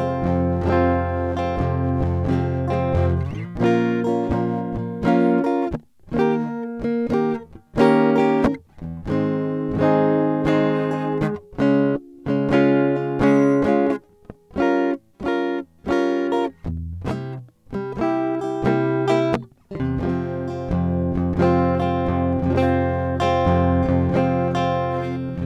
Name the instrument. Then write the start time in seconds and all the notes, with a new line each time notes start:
acoustic guitar
0.00 G#3 C4 F4
0.24 F2 C3
0.64 C3 F3
0.70 F2 G#3 C4
0.75 F4
1.39 C4 F4
1.61 F2 C3 F3
2.06 F2 C3
2.28 F2 C3
2.32 F3 G#3 C4
2.70 C4 F4
2.75 F3 G#3
2.97 F2 C3 F3
3.38 F3
3.60 A#2 F3 A#3
3.65 C#4 F4 A#4
4.07 F4 A#4
4.12 C#4
4.33 A#2 F3 A#3
4.78 A#2 F3
5.05 F3 A#3 C#4
5.10 F4 A#4
5.46 F4 A#4
6.15 D#3 A#3
6.19 C4 G4
6.23 A#4
6.84 D3 A#3
7.10 D#3 A#3 C4
7.16 G4 A#4
7.79 D#3 A#3 C#4
7.83 G4 A#4
8.18 C#4 G4 A#4
8.47 C#4
9.08 G#2 D#3
9.12 G#3 C4 D#4
9.75 G#2 D#3
9.81 G#3 C4 D#4
9.87 G#4
10.48 D#3 G#3 C4 D#4
10.94 D#4 G#4
11.23 G#3
11.61 C#3 G#3 C#4
11.67 F4
12.29 C#3 G#3
12.33 C#4
12.51 C#3 G#3
12.55 C#4 F4
12.98 C#4 F4
13.22 C#3 G#3 C#4 F4
13.64 C#3 G#3 C#4
13.71 F4
14.57 G3 C#4
14.62 F4 A#4
15.22 G3 C#4
15.29 F4 A#4
15.88 G3 C#4
15.93 F4 A#4
16.34 F4 A#4
16.67 E2
17.08 C3 G3 A3
17.13 E4
17.73 C3 G3
17.99 G3 A#3
18.04 E4 G4
18.43 E4 G4
18.65 C3 G3
18.70 A#3 E4
19.10 A#3 E4 G4
19.36 A#3
19.74 G3
19.82 E2 C3
20.01 F2 C3
20.06 F3
20.12 C4
20.50 C4 F4
20.74 F2 C3
21.18 F2 C3
21.36 F2
21.40 C3 F3 G#3
21.44 C4 F4
21.82 G#3 C4 F4
22.09 F2
22.13 C3
22.45 F2 C3
22.53 F3
22.58 G#3 C4
22.65 F4
23.22 G#3 C4 F4
23.47 F2 C3
23.85 F4
23.92 F2 C3
24.12 F2 C3
24.16 F3 G#3 C4
24.21 F4
24.57 G#3 C4 F4